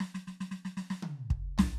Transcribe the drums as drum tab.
SD |oooooooo----o---|
T1 |--------o-------|
FT |------------o---|
BD |----------o-----|